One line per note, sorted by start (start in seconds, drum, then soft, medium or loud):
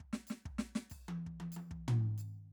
0.00 kick soft
0.13 snare medium
0.27 snare medium
0.27 percussion soft
0.46 kick soft
0.59 snare medium
0.75 snare medium
0.90 kick soft
0.90 percussion soft
1.08 high tom medium
1.26 kick soft
1.40 high tom medium
1.52 percussion soft
1.56 high tom medium
1.71 kick soft
1.88 floor tom loud
2.18 percussion soft